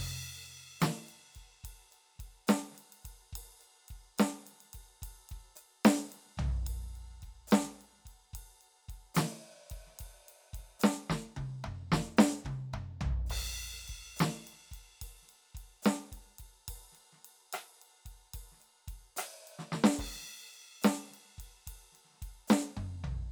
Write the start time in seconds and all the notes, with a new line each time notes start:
0.01 kick
0.46 snare, ride
0.81 snare, hi-hat pedal, ride
1.06 hi-hat pedal, ride
1.33 kick, snare, hi-hat pedal, ride
1.64 kick, ride
1.91 hi-hat pedal, ride
2.16 kick, snare
2.21 ride
2.48 snare, hi-hat pedal, ride
2.72 snare, hi-hat pedal
2.78 snare, ride
2.82 snare
2.93 ride
3.02 kick, hi-hat pedal, ride
3.33 kick, ride
3.60 hi-hat pedal, ride
3.89 kick, ride
4.18 snare, hi-hat pedal, ride
4.46 snare, hi-hat pedal, ride
4.52 snare
4.57 snare
4.60 snare, ride
4.64 snare
4.74 kick, ride
5.03 kick, ride
5.30 kick, snare, ride
5.37 kick
5.56 hi-hat pedal, ride
5.85 snare, ride
6.09 snare, hi-hat pedal, ride
6.17 snare
6.26 snare
6.30 snare
6.37 kick, snare, floor tom
6.66 kick, ride
6.72 kick
6.96 ride
7.23 kick, ride
7.48 hi-hat pedal
7.52 snare, ride
7.64 snare
7.81 ride
7.99 snare
8.06 kick, ride
8.34 kick, ride
8.61 ride
8.89 kick, ride
9.15 snare, hi-hat pedal, ride
9.70 kick, ride
9.87 snare
9.93 snare
9.99 kick, ride
10.29 ride
10.54 kick, ride
10.60 kick
10.80 hi-hat pedal, ride
10.84 snare
11.10 kick, snare
11.37 kick, high tom
11.44 kick
11.65 kick, mid tom
11.72 kick
11.92 kick, snare
11.99 kick
12.18 snare, hi-hat pedal
12.43 kick, snare, high tom
12.51 kick, snare
12.58 snare
12.74 kick, mid tom
12.80 kick
13.01 kick, floor tom
13.09 kick
13.27 kick, hi-hat pedal, crash
13.37 kick
13.85 snare, ride
13.90 kick
14.17 snare, hi-hat pedal, ride
14.44 snare, hi-hat pedal, ride
14.53 snare
14.66 snare
14.70 kick, hi-hat pedal, ride
15.02 kick, ride
15.07 kick
15.23 snare
15.28 snare, ride
15.55 kick, ride
15.83 snare, hi-hat pedal, ride
16.12 kick, ride
16.39 kick, ride
16.69 kick, ride
16.93 snare, ride
17.13 snare
17.16 snare
17.20 snare
17.25 ride
17.53 cross-stick, hi-hat pedal, ride
17.82 ride
18.06 kick, ride
18.34 kick, ride
18.52 snare
18.57 snare, hi-hat pedal
18.61 snare, ride
18.88 kick, ride
18.96 kick
19.17 cross-stick, hi-hat pedal, ride
19.48 ride
19.59 snare
19.73 snare
19.84 snare
19.99 kick, crash
20.06 kick
20.16 snare
20.23 snare
20.26 snare
20.55 ride
20.82 snare, hi-hat pedal, ride
21.10 snare, ride
21.37 kick, snare, ride
21.67 kick, ride
21.93 snare, ride
22.05 snare
22.10 snare
22.13 snare
22.22 kick, ride
22.48 snare, hi-hat pedal, ride
22.77 kick, mid tom
23.04 kick, floor tom